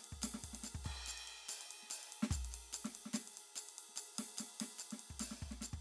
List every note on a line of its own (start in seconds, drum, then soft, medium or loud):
0.01 percussion soft
0.05 ride medium
0.12 kick soft
0.22 snare soft
0.22 ride loud
0.22 percussion loud
0.34 snare soft
0.42 kick soft
0.42 ride medium
0.42 percussion soft
0.53 snare soft
0.53 ride medium
0.63 snare soft
0.63 ride medium
0.63 percussion medium
0.75 kick soft
0.85 kick soft
0.85 percussion soft
0.85 ride medium
1.07 ride medium
1.07 percussion loud
1.18 ride medium
1.28 ride medium
1.28 percussion soft
1.49 ride medium
1.49 percussion loud
1.61 ride medium
1.69 ride medium
1.69 percussion soft
1.83 snare soft
1.91 ride medium
1.91 percussion loud
2.03 ride medium
2.10 ride medium
2.10 percussion soft
2.23 snare medium
2.31 kick medium
2.31 ride medium
2.31 percussion loud
2.45 ride medium
2.52 ride medium
2.52 percussion medium
2.73 ride loud
2.73 percussion loud
2.85 snare soft
2.85 ride medium
2.92 ride medium
2.92 percussion soft
3.06 snare soft
3.14 snare medium
3.14 ride loud
3.14 percussion loud
3.28 ride medium
3.33 percussion soft
3.38 ride medium
3.56 ride loud
3.56 percussion loud
3.69 ride medium
3.75 ride medium
3.75 percussion soft
3.89 snare soft
3.97 ride loud
3.97 percussion loud
4.16 snare soft
4.16 ride loud
4.16 percussion soft
4.38 snare soft
4.38 ride loud
4.38 percussion loud
4.57 ride loud
4.57 percussion soft
4.61 snare soft
4.79 ride medium
4.79 percussion medium
4.91 snare soft
4.91 ride medium
5.00 ride medium
5.10 kick soft
5.20 snare soft
5.20 ride medium
5.20 percussion loud
5.31 snare soft
5.42 kick soft
5.51 snare soft
5.51 ride soft
5.61 snare soft
5.61 ride medium
5.61 percussion loud
5.74 kick soft